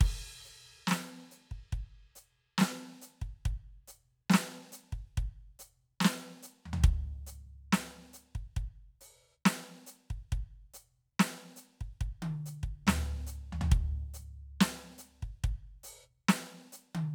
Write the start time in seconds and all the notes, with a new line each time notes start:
0.01 kick, crash
0.45 hi-hat pedal
0.87 snare
0.91 snare
1.31 hi-hat pedal
1.51 kick
1.73 kick
2.16 hi-hat pedal
2.58 snare
2.61 snare
3.02 hi-hat pedal
3.22 kick
3.46 kick
3.88 hi-hat pedal
4.30 snare
4.34 snare
4.72 hi-hat pedal
4.93 kick
5.18 kick
5.59 hi-hat pedal
6.01 snare
6.05 snare
6.43 hi-hat pedal
6.66 floor tom
6.73 floor tom
6.84 kick
7.27 hi-hat pedal
7.73 snare
8.14 hi-hat pedal
8.35 kick
8.57 kick
9.01 hi-hat pedal
9.46 snare
9.87 hi-hat pedal
10.10 kick
10.32 kick
10.74 hi-hat pedal
11.20 snare
11.57 hi-hat pedal
11.81 kick
12.01 kick
12.22 high tom
12.46 hi-hat pedal
12.63 kick
12.87 snare, floor tom
13.27 hi-hat pedal
13.53 floor tom
13.61 floor tom
13.72 kick
14.14 hi-hat pedal
14.61 snare
14.98 hi-hat pedal
15.23 kick
15.44 kick
15.84 hi-hat pedal
16.29 snare
16.73 hi-hat pedal
16.95 high tom